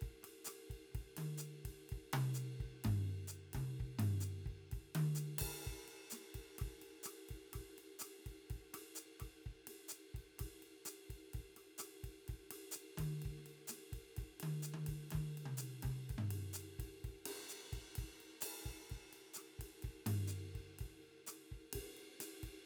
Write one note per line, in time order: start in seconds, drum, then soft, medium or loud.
0.01 kick soft
0.01 ride soft
0.07 kick soft
0.23 cross-stick soft
0.23 snare soft
0.23 ride medium
0.44 cross-stick soft
0.44 hi-hat pedal medium
0.44 ride medium
0.70 kick soft
0.70 ride soft
0.91 kick soft
0.91 mid tom soft
0.91 ride soft
1.00 kick soft
1.17 high tom medium
1.17 ride medium
1.38 hi-hat pedal medium
1.42 ride soft
1.65 kick soft
1.65 ride medium
1.70 kick soft
1.89 kick soft
1.89 ride soft
1.97 kick soft
2.13 mid tom loud
2.13 ride medium
2.34 hi-hat pedal medium
2.60 kick soft
2.60 ride soft
2.65 kick soft
2.84 kick soft
2.84 floor tom medium
2.84 ride medium
2.92 kick soft
3.27 hi-hat pedal medium
3.27 ride soft
3.53 kick soft
3.53 mid tom medium
3.53 ride medium
3.60 kick soft
3.80 kick soft
3.85 kick soft
3.99 floor tom loud
3.99 ride medium
4.20 hi-hat pedal medium
4.24 ride soft
4.46 kick soft
4.46 ride soft
4.51 kick soft
4.71 kick soft
4.71 ride soft
4.78 kick soft
4.95 high tom loud
4.95 ride medium
5.15 hi-hat pedal medium
5.19 ride soft
5.38 kick soft
5.38 crash loud
5.38 ride medium
5.46 kick soft
5.65 kick soft
5.65 ride soft
5.72 kick soft
5.88 ride soft
6.10 snare soft
6.10 hi-hat pedal medium
6.10 ride medium
6.34 kick soft
6.34 ride soft
6.58 kick soft
6.58 cross-stick soft
6.58 ride medium
6.67 kick soft
6.82 ride soft
7.03 cross-stick soft
7.03 snare soft
7.03 hi-hat pedal medium
7.03 ride medium
7.29 kick soft
7.29 ride soft
7.53 kick soft
7.53 cross-stick soft
7.53 snare soft
7.53 ride medium
7.60 kick soft
7.78 ride soft
7.99 cross-stick soft
7.99 snare soft
7.99 hi-hat pedal medium
7.99 ride medium
8.19 snare soft
8.26 kick soft
8.26 ride soft
8.50 kick soft
8.50 ride soft
8.56 kick soft
8.73 cross-stick soft
8.73 snare soft
8.73 ride medium
8.95 hi-hat pedal medium
9.20 kick soft
9.20 cross-stick soft
9.20 ride soft
9.44 kick soft
9.44 ride soft
9.51 kick soft
9.67 snare soft
9.67 ride medium
9.88 hi-hat pedal medium
9.88 ride soft
10.14 kick soft
10.14 ride soft
10.19 kick soft
10.38 kick soft
10.38 cross-stick soft
10.38 ride medium
10.46 kick soft
10.62 ride soft
10.85 cross-stick soft
10.85 hi-hat pedal medium
10.85 ride medium
11.10 kick soft
11.10 ride soft
11.33 kick soft
11.33 ride soft
11.39 kick soft
11.56 cross-stick soft
11.56 ride soft
11.78 cross-stick soft
11.78 hi-hat pedal medium
11.78 ride medium
12.03 kick soft
12.03 ride soft
12.28 kick soft
12.28 ride soft
12.34 kick soft
12.51 cross-stick soft
12.51 ride medium
12.71 hi-hat pedal loud
12.76 ride soft
12.97 kick soft
12.97 high tom medium
12.97 ride medium
13.04 kick soft
13.22 kick soft
13.22 ride soft
13.30 kick soft
13.37 snare soft
13.46 ride soft
13.67 snare soft
13.67 hi-hat pedal medium
13.67 ride medium
13.92 kick soft
13.92 ride soft
13.97 kick soft
14.17 kick soft
14.17 ride soft
14.23 kick soft
14.40 high tom medium
14.40 ride medium
14.62 hi-hat pedal medium
14.62 ride soft
14.74 high tom medium
14.86 kick soft
14.86 ride medium
14.93 kick soft
15.11 kick soft
15.11 high tom medium
15.11 ride medium
15.20 kick soft
15.37 ride soft
15.45 mid tom medium
15.57 hi-hat pedal medium
15.57 ride medium
15.82 kick soft
15.82 mid tom medium
15.82 ride medium
15.89 kick soft
16.09 kick soft
16.09 ride soft
16.15 kick soft
16.15 floor tom medium
16.31 ride medium
16.53 hi-hat pedal medium
16.53 ride medium
16.79 kick soft
16.79 ride medium
16.84 kick soft
17.04 kick soft
17.04 ride soft
17.09 kick soft
17.25 ride medium
17.25 crash medium
17.49 hi-hat pedal medium
17.49 ride soft
17.72 kick soft
17.72 ride soft
17.78 kick soft
17.95 kick soft
17.95 ride medium
18.04 kick soft
18.20 ride soft
18.41 hi-hat pedal medium
18.41 crash loud
18.41 ride medium
18.65 kick soft
18.65 ride soft
18.71 kick soft
18.90 kick soft
18.90 snare soft
18.90 ride soft
18.96 kick soft
19.13 ride soft
19.34 cross-stick soft
19.34 hi-hat pedal medium
19.34 ride soft
19.59 kick soft
19.59 ride medium
19.82 kick soft
19.82 ride soft
19.89 kick soft
20.06 floor tom medium
20.06 ride medium
20.27 hi-hat pedal medium
20.27 ride soft
20.55 kick soft
20.55 ride soft
20.60 kick soft
20.79 kick soft
20.79 ride soft
20.86 kick soft
21.03 ride soft
21.26 cross-stick soft
21.26 snare soft
21.26 hi-hat pedal medium
21.26 ride medium
21.51 kick soft
21.73 kick soft
21.73 ride medium
21.80 kick soft
21.97 ride soft
22.19 snare soft
22.19 hi-hat pedal medium
22.19 ride medium
22.43 kick soft
22.43 ride soft